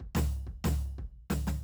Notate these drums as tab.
SD |-o--o---oo--|
FT |-o--o---oo--|
BD |o--o--o-----|